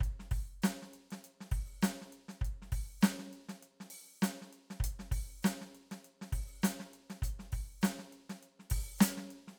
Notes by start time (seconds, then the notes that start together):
0.01 kick, closed hi-hat
0.20 snare
0.32 kick, open hi-hat
0.63 closed hi-hat, snare, hi-hat pedal
0.83 snare
0.94 closed hi-hat
1.11 snare, closed hi-hat
1.25 closed hi-hat
1.41 snare
1.52 kick, open hi-hat
1.82 closed hi-hat, snare, hi-hat pedal
2.02 snare
2.13 closed hi-hat
2.29 snare, closed hi-hat
2.42 kick, closed hi-hat
2.62 snare
2.73 kick, open hi-hat
3.02 closed hi-hat, snare, hi-hat pedal
3.20 snare
3.33 closed hi-hat
3.49 snare, closed hi-hat
3.63 closed hi-hat
3.81 snare
3.91 open hi-hat
4.22 closed hi-hat, snare, hi-hat pedal
4.42 snare
4.53 closed hi-hat
4.71 snare, closed hi-hat
4.80 kick, closed hi-hat
5.00 snare
5.12 kick, open hi-hat
5.43 closed hi-hat, snare, hi-hat pedal
5.62 snare
5.75 closed hi-hat
5.92 snare, closed hi-hat
6.05 closed hi-hat
6.22 snare
6.33 kick, open hi-hat
6.63 closed hi-hat, snare, hi-hat pedal
6.80 snare
6.94 closed hi-hat
7.10 snare, closed hi-hat
7.23 closed hi-hat, kick
7.40 snare
7.53 kick, open hi-hat
7.82 closed hi-hat, snare, hi-hat pedal
7.99 snare
8.13 closed hi-hat
8.30 snare, closed hi-hat
8.43 closed hi-hat
8.60 snare
8.70 kick, snare, open hi-hat
8.99 closed hi-hat, snare, hi-hat pedal
9.18 snare
9.31 closed hi-hat
9.48 snare, closed hi-hat